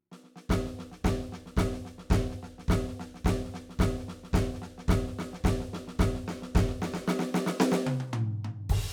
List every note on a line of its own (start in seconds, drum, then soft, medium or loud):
0.11 snare soft
0.24 snare soft
0.36 snare soft
0.49 kick medium
0.49 snare loud
0.66 snare soft
0.79 snare medium
0.92 snare soft
1.04 kick medium
1.04 snare loud
1.21 snare soft
1.32 snare medium
1.46 snare soft
1.57 kick medium
1.57 snare loud
1.73 snare soft
1.85 snare soft
1.98 snare soft
2.10 kick loud
2.10 snare loud
2.30 snare soft
2.43 snare soft
2.58 snare soft
2.68 kick loud
2.68 snare loud
2.88 snare soft
3.00 snare medium
3.14 snare soft
3.25 kick medium
3.25 snare loud
3.45 snare soft
3.54 snare medium
3.69 snare soft
3.79 kick loud
3.79 snare loud
3.98 snare soft
4.08 snare medium
4.24 snare soft
4.33 kick loud
4.33 snare loud
4.54 snare soft
4.62 snare medium
4.78 snare soft
4.88 kick loud
4.88 snare loud
5.07 snare soft
5.19 snare medium
5.33 snare medium
5.44 kick loud
5.44 snare loud
5.60 snare soft
5.73 snare medium
5.87 snare medium
5.99 kick loud
5.99 snare loud
6.15 snare soft
6.28 snare medium
6.42 snare medium
6.55 kick loud
6.55 snare loud
6.67 snare medium
6.82 snare loud
6.94 snare medium
7.08 snare loud
7.19 snare loud
7.34 snare loud
7.46 snare loud
7.60 snare loud
7.72 snare loud
7.87 high tom loud
8.00 high tom loud
8.13 mid tom loud
8.45 mid tom medium
8.70 kick loud
8.70 crash medium